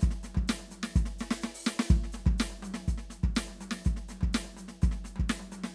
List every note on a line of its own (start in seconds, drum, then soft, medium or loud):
0.01 kick loud
0.01 hi-hat pedal medium
0.01 high tom medium
0.11 snare soft
0.24 snare soft
0.24 hi-hat pedal medium
0.24 high tom medium
0.35 kick medium
0.35 high tom medium
0.48 snare loud
0.48 hi-hat pedal medium
0.60 high tom medium
0.71 hi-hat pedal medium
0.71 high tom medium
0.84 snare medium
0.96 kick loud
0.96 hi-hat pedal medium
0.96 high tom medium
1.06 snare medium
1.19 snare medium
1.19 hi-hat pedal medium
1.31 snare loud
1.42 snare medium
1.42 hi-hat pedal medium
1.55 open hi-hat loud
1.65 snare loud
1.65 hi-hat pedal medium
1.80 snare loud
1.89 kick loud
1.89 hi-hat pedal medium
1.93 high tom soft
2.04 snare soft
2.13 snare medium
2.13 hi-hat pedal medium
2.13 high tom medium
2.27 kick loud
2.27 high tom medium
2.39 snare loud
2.39 hi-hat pedal medium
2.51 high tom medium
2.63 hi-hat pedal medium
2.63 high tom medium
2.75 snare medium
2.88 kick medium
2.88 hi-hat pedal medium
2.88 high tom soft
2.98 snare soft
3.11 snare soft
3.11 hi-hat pedal medium
3.11 high tom soft
3.24 kick medium
3.24 high tom medium
3.36 snare loud
3.36 hi-hat pedal medium
3.49 high tom medium
3.61 hi-hat pedal medium
3.61 high tom medium
3.71 snare medium
3.85 kick medium
3.85 hi-hat pedal medium
3.85 high tom medium
3.97 snare soft
4.09 snare soft
4.09 hi-hat pedal medium
4.09 high tom medium
4.21 kick medium
4.21 high tom medium
4.34 snare loud
4.34 hi-hat pedal medium
4.45 high tom medium
4.57 hi-hat pedal medium
4.57 high tom medium
4.69 snare medium
4.82 kick loud
4.82 hi-hat pedal medium
4.82 high tom medium
4.92 snare soft
5.05 snare soft
5.05 hi-hat pedal medium
5.05 high tom medium
5.17 kick medium
5.17 high tom medium
5.29 snare loud
5.29 hi-hat pedal medium
5.40 high tom medium
5.52 hi-hat pedal medium
5.52 high tom medium
5.64 snare medium